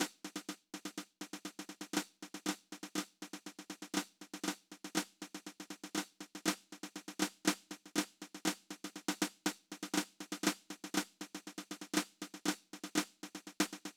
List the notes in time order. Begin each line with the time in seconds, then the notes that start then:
0.00 snare
0.24 snare
0.36 snare
0.49 snare
0.74 snare
0.85 snare
0.97 snare
1.21 snare
1.33 snare
1.45 snare
1.59 snare
1.69 snare
1.81 snare
1.93 snare
1.97 snare
2.22 snare
2.34 snare
2.46 snare
2.48 snare
2.72 snare
2.83 snare
2.95 snare
2.98 snare
3.22 snare
3.33 snare
3.46 snare
3.59 snare
3.70 snare
3.82 snare
3.94 snare
3.97 snare
4.21 snare
4.33 snare
4.48 snare
4.71 snare
4.84 snare
4.95 snare
4.97 snare
5.22 snare
5.34 snare
5.46 snare
5.60 snare
5.70 snare
5.83 snare
5.95 snare
5.97 snare
6.20 snare
6.35 snare
6.45 snare
6.48 snare
6.72 snare
6.83 snare
6.96 snare
7.08 snare
7.19 snare
7.22 snare
7.45 snare
7.47 snare
7.71 snare
7.85 snare
7.98 snare
8.22 snare
8.34 snare
8.45 snare
8.47 snare
8.70 snare
8.84 snare
8.96 snare
9.08 snare
9.22 snare
9.46 snare
9.72 snare
9.82 snare
9.94 snare
9.97 snare
10.20 snare
10.32 snare
10.43 snare
10.47 snare
10.70 snare
10.84 snare
10.94 snare
10.97 snare
11.21 snare
11.34 snare
11.47 snare
11.58 snare
11.71 snare
11.81 snare
11.93 snare
11.97 snare
12.22 snare
12.34 snare
12.45 snare
12.48 snare
12.73 snare
12.83 snare
12.95 snare
12.97 snare
13.23 snare
13.35 snare
13.47 snare
13.60 snare
13.72 snare
13.85 snare